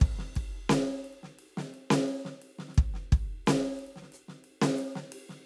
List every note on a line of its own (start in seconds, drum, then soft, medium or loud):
0.01 kick loud
0.01 crash medium
0.19 snare soft
0.36 kick medium
0.36 ride medium
0.70 snare loud
0.70 hi-hat pedal medium
0.70 ride medium
1.05 ride soft
1.13 ride soft
1.24 snare soft
1.39 ride medium
1.48 hi-hat pedal soft
1.58 snare medium
1.75 ride soft
1.91 snare loud
2.09 ride soft
2.26 snare medium
2.42 ride medium
2.59 snare medium
2.75 kick loud
2.75 ride soft
2.94 snare soft
3.13 kick loud
3.13 ride soft
3.47 snare loud
3.47 hi-hat pedal medium
3.47 ride medium
3.75 hi-hat pedal soft
3.80 ride soft
3.87 ride soft
3.96 snare soft
4.03 snare soft
4.13 hi-hat pedal medium
4.13 ride soft
4.29 snare soft
4.45 ride medium
4.62 snare loud
4.76 hi-hat pedal medium
4.76 ride medium
4.96 snare medium
5.13 ride loud
5.30 snare soft